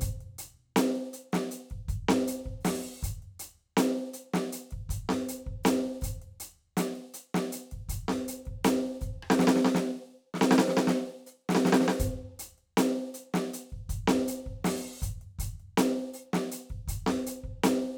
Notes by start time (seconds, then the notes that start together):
0.01 closed hi-hat, kick
0.21 closed hi-hat
0.38 closed hi-hat
0.76 closed hi-hat, snare
0.96 closed hi-hat
1.13 closed hi-hat
1.33 snare, closed hi-hat
1.51 closed hi-hat
1.70 kick, closed hi-hat
1.88 closed hi-hat, kick
2.09 snare
2.28 closed hi-hat
2.44 kick, closed hi-hat
2.61 hi-hat pedal
2.65 open hi-hat, snare
3.02 closed hi-hat, kick, hi-hat pedal
3.22 closed hi-hat
3.40 closed hi-hat
3.59 closed hi-hat
3.77 closed hi-hat, snare
4.14 closed hi-hat
4.34 snare
4.53 closed hi-hat
4.71 kick, closed hi-hat
4.89 closed hi-hat, kick
5.09 snare
5.29 closed hi-hat
5.46 kick, closed hi-hat
5.64 closed hi-hat, snare, hi-hat pedal
6.01 closed hi-hat, kick, hi-hat pedal
6.22 closed hi-hat
6.40 closed hi-hat
6.77 closed hi-hat, snare
6.95 closed hi-hat
7.14 closed hi-hat
7.34 snare
7.52 closed hi-hat
7.71 kick, closed hi-hat
7.89 closed hi-hat, kick
8.08 snare
8.28 closed hi-hat
8.45 kick, closed hi-hat
8.64 closed hi-hat, snare
9.01 kick, hi-hat pedal
9.23 cross-stick
9.30 snare
9.39 snare, hi-hat pedal
9.47 snare
9.56 snare
9.65 snare
9.75 snare
10.34 snare
10.41 snare
10.51 snare, hi-hat pedal
10.58 snare
10.68 snare
10.77 snare
10.87 snare
11.27 hi-hat pedal
11.41 closed hi-hat
11.49 snare
11.55 snare
11.65 snare
11.73 snare
11.81 snare
11.88 snare
12.00 closed hi-hat, kick
12.39 closed hi-hat
12.58 closed hi-hat
12.77 closed hi-hat, snare
13.14 closed hi-hat
13.34 snare
13.54 closed hi-hat
13.70 kick, closed hi-hat
13.89 closed hi-hat, kick
14.08 snare
14.28 closed hi-hat
14.46 kick
14.65 open hi-hat, snare
15.00 closed hi-hat, kick, hi-hat pedal
15.21 closed hi-hat
15.39 closed hi-hat, kick
15.60 closed hi-hat
15.78 closed hi-hat, snare
16.14 open hi-hat
16.33 snare
16.52 closed hi-hat
16.70 kick, closed hi-hat
16.88 closed hi-hat, kick
17.07 snare
17.27 closed hi-hat
17.44 kick, closed hi-hat
17.64 open hi-hat, snare